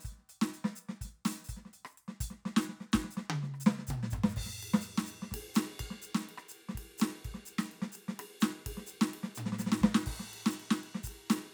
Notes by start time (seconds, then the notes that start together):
0.01 hi-hat pedal
0.05 closed hi-hat, kick
0.12 snare
0.19 snare
0.30 closed hi-hat
0.42 snare
0.54 closed hi-hat
0.65 snare
0.76 hi-hat pedal
0.89 snare
1.02 closed hi-hat, kick, snare
1.26 open hi-hat, snare
1.45 hi-hat pedal
1.49 closed hi-hat, kick
1.57 snare
1.66 snare
1.74 closed hi-hat
1.85 cross-stick
1.90 hi-hat pedal
1.98 closed hi-hat
2.08 snare
2.21 closed hi-hat, kick
2.27 kick, snare
2.31 kick
2.46 snare
2.57 snare
2.62 hi-hat pedal
2.69 snare
2.81 snare
2.93 kick, snare, hi-hat pedal
3.01 kick, snare
3.11 hi-hat pedal
3.18 snare
3.30 high tom
3.43 snare
3.54 cross-stick
3.61 hi-hat pedal
3.67 snare
3.79 snare
3.88 kick, hi-hat pedal, mid tom
3.97 kick
4.04 snare
4.11 kick, floor tom, hi-hat pedal
4.20 kick
4.22 kick, snare
4.30 hi-hat pedal
4.37 kick, crash
4.44 kick, snare
4.63 ride
4.74 snare
4.81 hi-hat pedal
4.86 ride
4.98 snare
5.06 hi-hat pedal
5.10 ride
5.23 snare
5.32 kick, snare, ride
5.55 snare, hi-hat pedal, ride
5.80 kick, ride bell
5.89 kick, snare
6.02 hi-hat pedal, ride
6.15 snare
6.29 ride
6.38 cross-stick
6.49 hi-hat pedal, ride
6.69 snare
6.75 kick, ride
6.99 snare, hi-hat pedal, ride
7.25 kick, ride bell
7.31 kick, snare
7.46 hi-hat pedal, ride
7.59 snare
7.72 ride
7.82 snare
7.92 hi-hat pedal, ride
8.09 snare
8.20 cross-stick, ride
8.41 snare, hi-hat pedal, ride
8.67 kick, ride
8.72 kick
8.75 kick, snare
8.87 hi-hat pedal
8.91 ride
9.02 snare
9.14 ride
9.24 snare
9.36 hi-hat pedal, mid tom
9.46 snare
9.53 snare
9.59 snare, hi-hat pedal
9.67 snare
9.72 snare
9.82 kick, snare
9.88 kick
9.95 snare
10.07 kick, crash
10.14 kick
10.20 snare
10.34 ride
10.46 snare
10.51 hi-hat pedal
10.60 ride
10.71 snare
10.84 ride
10.95 snare
11.04 kick, hi-hat pedal
11.08 ride
11.12 kick
11.30 snare, hi-hat pedal, ride